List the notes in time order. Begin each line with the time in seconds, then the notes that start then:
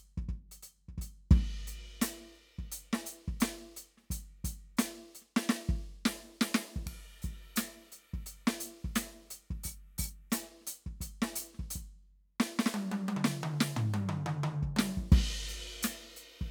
0.18 kick
0.29 kick
0.51 closed hi-hat
0.63 closed hi-hat
0.89 kick
0.98 closed hi-hat, kick
1.31 kick, crash
1.67 closed hi-hat
2.02 closed hi-hat, snare
2.36 closed hi-hat
2.59 kick
2.72 closed hi-hat
2.93 snare
3.06 closed hi-hat
3.28 kick
3.41 open hi-hat, snare
3.77 closed hi-hat
3.98 snare
4.04 snare
4.07 snare
4.10 closed hi-hat, kick, snare
4.45 closed hi-hat, kick
4.77 closed hi-hat, snare, hi-hat pedal
5.15 closed hi-hat
5.22 snare
5.36 snare
5.49 snare
5.69 kick
6.05 snare
6.41 snare
6.55 snare
6.76 kick
6.87 kick, crash
7.22 open hi-hat, kick
7.56 closed hi-hat, snare
7.92 closed hi-hat
8.14 kick
8.23 closed hi-hat, kick
8.47 snare
8.60 closed hi-hat
8.85 kick
8.96 closed hi-hat, snare
9.31 closed hi-hat
9.51 kick
9.64 open hi-hat, kick
9.98 open hi-hat, kick
10.30 closed hi-hat, snare, hi-hat pedal
10.61 snare
10.67 closed hi-hat
10.86 kick
11.01 closed hi-hat, kick
11.22 snare
11.36 closed hi-hat
11.54 snare
11.59 kick, snare
11.68 closed hi-hat, snare
11.76 kick
12.40 snare
12.59 snare
12.66 snare
12.74 high tom
12.92 high tom
13.08 high tom
13.17 mid tom
13.24 snare
13.43 mid tom
13.61 snare
13.77 floor tom
13.94 high tom
14.09 mid tom
14.26 mid tom
14.44 mid tom
14.63 kick
14.77 snare, high tom
14.97 kick
15.12 kick, crash
15.49 open hi-hat
15.83 closed hi-hat, snare
16.17 closed hi-hat
16.41 kick